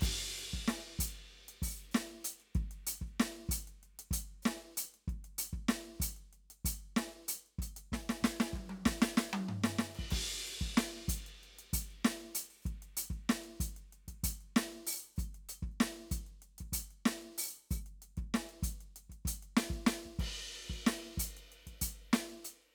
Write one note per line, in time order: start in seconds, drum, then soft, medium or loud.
0.01 kick medium
0.01 hi-hat pedal loud
0.01 ride loud
0.39 closed hi-hat soft
0.53 kick soft
0.68 snare loud
0.99 closed hi-hat loud
0.99 kick medium
1.16 closed hi-hat soft
1.35 closed hi-hat soft
1.48 closed hi-hat medium
1.62 open hi-hat loud
1.62 kick soft
1.91 snare loud
1.91 hi-hat pedal soft
2.24 closed hi-hat loud
2.40 closed hi-hat soft
2.55 kick medium
2.55 closed hi-hat soft
2.71 closed hi-hat soft
2.87 closed hi-hat loud
3.01 kick soft
3.07 closed hi-hat soft
3.20 snare loud
3.49 closed hi-hat loud
3.49 kick medium
3.67 closed hi-hat soft
3.83 closed hi-hat soft
3.99 closed hi-hat medium
4.11 closed hi-hat loud
4.11 kick medium
4.42 snare loud
4.42 hi-hat pedal medium
4.77 closed hi-hat loud
4.94 closed hi-hat soft
5.08 kick soft
5.08 closed hi-hat soft
5.24 closed hi-hat soft
5.38 closed hi-hat loud
5.53 kick soft
5.69 snare loud
6.00 closed hi-hat loud
6.00 kick soft
6.16 closed hi-hat soft
6.33 closed hi-hat soft
6.50 closed hi-hat medium
6.65 closed hi-hat loud
6.65 kick medium
6.96 snare loud
7.28 closed hi-hat loud
7.46 closed hi-hat soft
7.59 closed hi-hat medium
7.59 kick soft
7.76 closed hi-hat medium
7.92 kick soft
7.92 snare medium
8.09 snare medium
8.23 kick soft
8.23 snare loud
8.40 snare loud
8.53 kick soft
8.53 high tom medium
8.69 high tom medium
8.86 kick soft
8.86 snare loud
9.02 snare loud
9.17 snare loud
9.33 high tom loud
9.49 floor tom medium
9.64 snare loud
9.79 snare loud
9.95 crash medium
9.99 kick soft
10.11 kick medium
10.11 ride loud
10.47 closed hi-hat soft
10.61 kick medium
10.77 snare loud
10.93 closed hi-hat soft
11.08 closed hi-hat loud
11.08 kick medium
11.26 closed hi-hat soft
11.43 closed hi-hat soft
11.59 closed hi-hat medium
11.73 closed hi-hat loud
11.73 kick medium
11.90 closed hi-hat soft
12.05 snare loud
12.20 closed hi-hat soft
12.35 closed hi-hat loud
12.50 open hi-hat soft
12.62 kick soft
12.62 hi-hat pedal soft
12.67 closed hi-hat soft
12.82 closed hi-hat soft
12.97 closed hi-hat loud
13.10 kick soft
13.10 closed hi-hat soft
13.29 snare loud
13.44 closed hi-hat soft
13.60 closed hi-hat medium
13.60 kick medium
13.76 closed hi-hat soft
13.93 closed hi-hat soft
14.08 kick soft
14.08 closed hi-hat medium
14.24 closed hi-hat loud
14.24 kick medium
14.41 closed hi-hat soft
14.56 snare loud
14.71 closed hi-hat soft
14.87 open hi-hat loud
15.04 open hi-hat soft
15.16 closed hi-hat medium
15.16 kick medium
15.16 hi-hat pedal soft
15.34 closed hi-hat soft
15.49 closed hi-hat medium
15.63 kick soft
15.72 closed hi-hat soft
15.80 snare loud
15.95 closed hi-hat soft
16.11 closed hi-hat medium
16.11 kick medium
16.27 closed hi-hat soft
16.42 closed hi-hat soft
16.58 kick soft
16.58 closed hi-hat medium
16.73 closed hi-hat loud
16.73 kick soft
16.91 closed hi-hat soft
17.06 snare loud
17.21 closed hi-hat soft
17.38 open hi-hat loud
17.56 open hi-hat soft
17.71 open hi-hat medium
17.71 kick medium
17.71 hi-hat pedal medium
17.86 closed hi-hat soft
18.02 closed hi-hat medium
18.17 kick soft
18.17 closed hi-hat soft
18.34 snare loud
18.49 closed hi-hat soft
18.63 closed hi-hat medium
18.63 kick medium
18.81 closed hi-hat soft
18.96 closed hi-hat medium
19.10 kick soft
19.10 closed hi-hat soft
19.25 closed hi-hat loud
19.25 kick soft
19.43 closed hi-hat soft
19.57 snare loud
19.70 kick soft
19.70 closed hi-hat soft
19.87 snare loud
20.05 kick soft
20.19 kick medium
20.19 hi-hat pedal soft
20.19 crash loud
20.32 closed hi-hat soft
20.55 closed hi-hat soft
20.70 kick soft
20.70 closed hi-hat soft
20.87 snare loud
21.04 closed hi-hat soft
21.18 closed hi-hat loud
21.18 kick soft
21.25 kick soft
21.37 closed hi-hat soft
21.52 closed hi-hat soft
21.67 kick soft
21.67 closed hi-hat soft
21.81 closed hi-hat loud
21.81 kick soft
22.04 closed hi-hat soft
22.13 snare loud
22.29 closed hi-hat soft
22.45 closed hi-hat medium
22.62 closed hi-hat soft